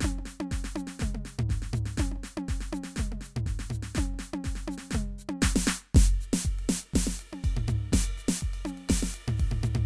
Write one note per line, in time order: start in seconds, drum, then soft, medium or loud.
0.01 kick medium
0.01 snare medium
0.01 hi-hat pedal medium
0.01 high tom loud
0.19 high tom soft
0.26 snare soft
0.26 hi-hat pedal medium
0.41 high tom loud
0.52 kick medium
0.52 snare medium
0.52 hi-hat pedal soft
0.65 snare medium
0.76 hi-hat pedal medium
0.76 high tom loud
0.88 snare soft
1.00 kick medium
1.00 snare medium
1.00 hi-hat pedal soft
1.00 mid tom loud
1.15 mid tom medium
1.26 snare soft
1.26 hi-hat pedal medium
1.39 floor tom loud
1.50 kick medium
1.50 snare soft
1.50 hi-hat pedal medium
1.62 snare soft
1.74 floor tom loud
1.74 hi-hat pedal medium
1.86 snare soft
1.98 kick medium
1.98 snare medium
1.98 hi-hat pedal medium
1.98 high tom loud
2.12 high tom medium
2.16 high tom soft
2.24 snare soft
2.24 hi-hat pedal loud
2.38 high tom loud
2.48 kick medium
2.48 snare medium
2.48 hi-hat pedal medium
2.61 snare soft
2.73 hi-hat pedal medium
2.73 high tom loud
2.84 snare soft
2.97 kick medium
2.97 snare medium
2.97 hi-hat pedal medium
2.97 mid tom medium
3.12 mid tom medium
3.21 snare soft
3.21 hi-hat pedal loud
3.37 floor tom loud
3.47 kick medium
3.47 snare soft
3.47 hi-hat pedal medium
3.60 snare soft
3.71 floor tom loud
3.71 hi-hat pedal medium
3.83 snare soft
3.95 kick medium
3.95 snare medium
3.95 hi-hat pedal medium
3.95 high tom loud
4.14 high tom soft
4.19 snare medium
4.19 hi-hat pedal medium
4.34 high tom loud
4.45 kick medium
4.45 snare soft
4.45 hi-hat pedal medium
4.56 snare soft
4.68 hi-hat pedal medium
4.68 high tom loud
4.78 snare soft
4.91 kick medium
4.91 snare medium
4.91 hi-hat pedal medium
4.91 mid tom loud
5.19 hi-hat pedal loud
5.29 high tom loud
5.42 kick medium
5.42 snare loud
5.42 hi-hat pedal medium
5.56 snare loud
5.65 snare loud
5.65 hi-hat pedal medium
5.95 kick loud
5.95 snare loud
5.95 hi-hat pedal soft
5.95 ride loud
6.21 hi-hat pedal medium
6.21 ride soft
6.34 snare loud
6.45 kick medium
6.45 hi-hat pedal medium
6.45 ride loud
6.59 ride medium
6.69 snare loud
6.69 hi-hat pedal medium
6.84 ride medium
6.94 kick medium
6.94 snare loud
6.94 hi-hat pedal medium
6.94 ride loud
7.07 snare medium
7.19 hi-hat pedal medium
7.19 ride loud
7.33 high tom medium
7.43 kick medium
7.43 hi-hat pedal medium
7.43 ride bell medium
7.57 floor tom loud
7.68 floor tom loud
7.68 hi-hat pedal medium
7.93 kick medium
7.93 snare loud
7.93 hi-hat pedal medium
7.93 ride bell loud
8.18 hi-hat pedal medium
8.18 ride medium
8.29 snare loud
8.41 kick medium
8.41 hi-hat pedal medium
8.41 ride loud
8.54 ride bell medium
8.66 hi-hat pedal medium
8.66 high tom loud
8.78 ride medium
8.89 kick medium
8.89 snare loud
8.89 hi-hat pedal medium
8.89 ride bell loud
9.03 snare medium
9.14 hi-hat pedal medium
9.14 ride loud
9.28 floor tom loud
9.38 kick medium
9.38 hi-hat pedal medium
9.38 ride loud
9.52 floor tom loud
9.64 floor tom loud
9.64 hi-hat pedal loud
9.75 floor tom loud